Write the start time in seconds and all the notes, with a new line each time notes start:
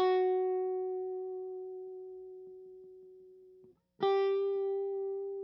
0.00 F#4
4.04 G4